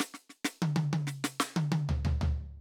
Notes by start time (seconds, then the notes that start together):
0.00 snare
0.14 snare
0.29 snare
0.45 snare
0.62 high tom
0.76 high tom
0.93 high tom
1.07 snare
1.24 snare
1.40 snare
1.56 high tom
1.72 high tom
1.89 floor tom
2.05 floor tom
2.21 floor tom